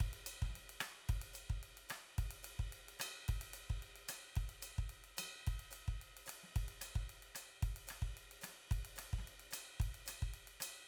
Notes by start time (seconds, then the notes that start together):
0.01 kick, ride
0.07 kick
0.14 ride
0.27 hi-hat pedal, ride bell
0.43 kick, snare
0.50 snare
0.54 snare, ride
0.58 snare
0.70 ride
0.81 cross-stick, hi-hat pedal, ride
1.10 kick, ride
1.22 ride
1.34 hi-hat pedal, ride bell
1.50 kick
1.64 ride
1.78 ride
1.90 cross-stick, hi-hat pedal, ride
2.19 kick, snare, ride
2.32 ride
2.44 hi-hat pedal, ride
2.60 kick
2.73 ride
2.89 ride
3.00 cross-stick, snare, hi-hat pedal, ride bell
3.29 kick, ride
3.42 ride
3.54 hi-hat pedal, ride
3.71 kick
3.83 ride
3.97 ride
4.09 cross-stick, hi-hat pedal, ride bell
4.36 kick, ride
4.50 ride
4.63 hi-hat pedal, ride bell
4.79 kick
4.90 ride
5.05 ride
5.18 snare, hi-hat pedal, ride bell
5.24 cross-stick
5.47 kick, ride
5.60 ride
5.72 hi-hat pedal, ride
5.89 kick
6.02 ride
6.18 ride
6.27 cross-stick, hi-hat pedal, ride
6.44 snare
6.57 kick, ride
6.66 snare, ride
6.82 cross-stick, hi-hat pedal, ride bell
6.95 kick, cross-stick
7.10 ride
7.23 ride
7.36 cross-stick, hi-hat pedal, ride bell
7.63 kick, ride
7.77 ride
7.88 cross-stick, hi-hat pedal, ride
8.03 kick
8.18 ride
8.32 ride
8.42 cross-stick, snare, hi-hat pedal, ride
8.72 kick, ride
8.86 ride
8.97 cross-stick, hi-hat pedal, ride
9.14 kick
9.19 snare
9.28 ride
9.40 ride
9.52 cross-stick, hi-hat pedal, ride bell
9.81 kick, ride
9.86 kick
9.95 ride
10.07 cross-stick, hi-hat pedal, ride bell
10.23 kick
10.35 ride
10.48 ride
10.61 cross-stick, snare, hi-hat pedal, ride bell